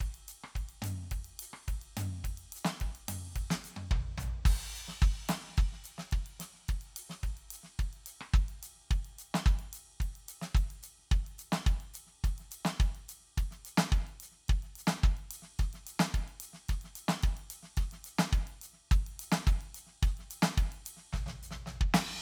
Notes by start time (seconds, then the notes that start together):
0.01 kick, ride
0.15 ride
0.29 hi-hat pedal, ride
0.44 cross-stick
0.56 kick, ride
0.70 ride
0.83 hi-hat pedal, high tom, ride
1.12 kick, ride
1.25 ride
1.40 hi-hat pedal, ride
1.54 cross-stick
1.69 kick, ride
1.82 ride
1.98 hi-hat pedal, high tom, ride
2.25 kick, ride
2.38 ride
2.53 hi-hat pedal, ride
2.65 snare
2.81 kick, ride
2.96 ride
3.09 hi-hat pedal, high tom, ride
3.36 kick, ride
3.51 snare
3.65 hi-hat pedal, ride
3.77 high tom
3.92 kick, floor tom
4.18 floor tom, hi-hat pedal
4.46 kick, crash, ride
4.76 hi-hat pedal, ride
4.89 snare
5.03 kick, ride
5.30 snare, hi-hat pedal, ride
5.58 kick, ride
5.73 snare
5.84 hi-hat pedal, ride
5.99 snare
6.12 kick, ride
6.27 ride
6.40 snare, hi-hat pedal, ride
6.54 snare
6.69 kick, ride
6.82 ride
6.97 hi-hat pedal, ride
7.10 snare
7.24 kick, ride
7.38 ride
7.51 hi-hat pedal, ride
7.64 snare
7.80 kick, ride
7.94 ride
8.07 hi-hat pedal, ride
8.22 cross-stick
8.34 kick, ride
8.49 ride
8.63 hi-hat pedal, ride
8.75 snare
8.91 kick, ride
9.05 ride
9.19 hi-hat pedal, ride
9.35 snare
9.47 kick, ride
9.60 ride
9.74 hi-hat pedal, ride
10.01 kick, ride
10.16 ride
10.29 hi-hat pedal, ride
10.42 snare
10.55 kick, ride
10.71 ride
10.83 hi-hat pedal, ride
10.99 snare
11.12 kick, snare, ride
11.24 snare, ride
11.39 hi-hat pedal, ride
11.53 snare
11.67 kick, ride
11.81 ride
11.94 hi-hat pedal, ride
12.07 snare
12.25 kick, snare, ride
12.39 snare, ride
12.52 hi-hat pedal, ride
12.66 snare
12.80 kick, ride
12.95 ride
13.09 hi-hat pedal, ride
13.21 snare
13.38 kick, snare, ride
13.52 snare, ride
13.66 hi-hat pedal, ride
13.78 snare
13.93 kick, ride
14.08 ride
14.21 hi-hat pedal, ride
14.32 snare
14.49 kick, snare, ride
14.63 snare, ride
14.76 hi-hat pedal, ride
14.88 snare
15.04 kick, hi-hat pedal, ride
15.18 ride
15.31 hi-hat pedal, ride
15.43 snare
15.59 kick, snare, hi-hat pedal, ride
15.74 snare, ride
15.88 hi-hat pedal, ride
16.00 snare
16.14 kick, hi-hat pedal, ride
16.28 ride
16.41 hi-hat pedal, ride
16.54 snare
16.68 kick, snare, hi-hat pedal, ride
16.82 snare, ride
16.96 hi-hat pedal, ride
17.09 snare
17.22 kick, hi-hat pedal, ride
17.34 snare, ride
17.51 hi-hat pedal, ride
17.63 snare
17.78 kick, snare, ride
17.92 snare, ride
18.05 hi-hat pedal, ride
18.19 snare
18.33 kick, ride
18.48 ride
18.62 hi-hat pedal, ride
18.74 snare
18.92 kick, snare, hi-hat pedal, ride
19.07 snare, ride
19.20 hi-hat pedal, ride
19.33 snare
19.48 kick, hi-hat pedal, ride
19.62 ride
19.75 hi-hat pedal, ride
19.87 snare
20.03 kick, snare, hi-hat pedal, ride
20.18 snare, ride
20.31 hi-hat pedal, ride
20.43 snare
20.58 kick, hi-hat pedal, ride
20.73 ride
20.86 hi-hat pedal, ride
20.97 snare
21.13 kick, snare, floor tom, hi-hat pedal
21.27 snare, floor tom
21.43 hi-hat pedal
21.52 snare, floor tom
21.67 snare, floor tom
21.81 kick
21.95 snare, ride
22.17 snare